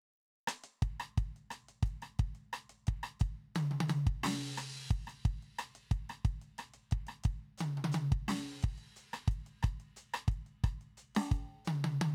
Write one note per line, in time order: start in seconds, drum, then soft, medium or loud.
0.47 cross-stick medium
0.47 closed hi-hat medium
0.64 closed hi-hat soft
0.82 kick soft
0.82 closed hi-hat soft
1.00 cross-stick medium
1.00 closed hi-hat soft
1.17 kick medium
1.17 closed hi-hat soft
1.36 closed hi-hat soft
1.51 cross-stick medium
1.51 closed hi-hat medium
1.69 closed hi-hat soft
1.83 kick medium
1.83 closed hi-hat medium
2.02 cross-stick medium
2.02 closed hi-hat soft
2.19 kick medium
2.19 closed hi-hat soft
2.35 closed hi-hat soft
2.53 cross-stick medium
2.53 closed hi-hat medium
2.69 closed hi-hat soft
2.87 kick soft
2.87 closed hi-hat soft
3.03 cross-stick medium
3.03 closed hi-hat soft
3.19 closed hi-hat medium
3.19 kick medium
3.55 hi-hat pedal medium
3.55 high tom loud
3.71 high tom medium
3.80 high tom loud
3.88 hi-hat pedal medium
3.88 high tom loud
4.07 kick medium
4.23 snare loud
4.23 crash loud
4.57 closed hi-hat medium
4.57 cross-stick medium
4.76 closed hi-hat soft
4.90 kick medium
4.90 closed hi-hat medium
5.07 cross-stick medium
5.07 closed hi-hat medium
5.25 kick medium
5.25 closed hi-hat soft
5.42 closed hi-hat soft
5.59 cross-stick medium
5.59 closed hi-hat medium
5.75 closed hi-hat soft
5.91 kick soft
5.91 closed hi-hat soft
6.09 cross-stick medium
6.09 closed hi-hat soft
6.25 kick medium
6.25 closed hi-hat soft
6.42 closed hi-hat soft
6.58 cross-stick medium
6.58 closed hi-hat medium
6.74 closed hi-hat soft
6.91 kick soft
6.91 closed hi-hat soft
7.07 cross-stick medium
7.07 closed hi-hat soft
7.24 kick medium
7.24 closed hi-hat medium
7.58 hi-hat pedal medium
7.58 high tom medium
7.77 high tom medium
7.84 high tom medium
7.92 hi-hat pedal medium
7.92 high tom medium
8.12 kick medium
8.28 snare loud
8.28 crash medium
8.63 kick soft
8.63 closed hi-hat soft
8.78 closed hi-hat soft
8.96 closed hi-hat soft
9.13 cross-stick medium
9.13 closed hi-hat soft
9.28 kick medium
9.28 closed hi-hat medium
9.46 closed hi-hat soft
9.63 kick medium
9.63 cross-stick medium
9.63 closed hi-hat medium
9.80 closed hi-hat soft
9.96 closed hi-hat medium
10.14 cross-stick medium
10.14 closed hi-hat soft
10.28 kick medium
10.28 closed hi-hat soft
10.46 closed hi-hat soft
10.64 kick medium
10.64 cross-stick medium
10.64 closed hi-hat medium
10.81 closed hi-hat soft
10.97 closed hi-hat soft
11.15 snare medium
11.15 closed hi-hat soft
11.31 closed hi-hat medium
11.31 kick medium
11.65 hi-hat pedal soft
11.65 high tom loud
11.84 high tom loud
12.01 high tom loud